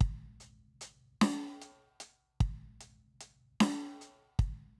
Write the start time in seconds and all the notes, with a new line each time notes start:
0.01 closed hi-hat, kick
0.41 closed hi-hat
0.82 closed hi-hat
1.22 closed hi-hat, snare
1.62 closed hi-hat
2.01 closed hi-hat
2.41 kick, closed hi-hat
2.81 closed hi-hat
3.21 closed hi-hat
3.61 closed hi-hat, snare
3.77 snare
4.02 closed hi-hat
4.40 kick, closed hi-hat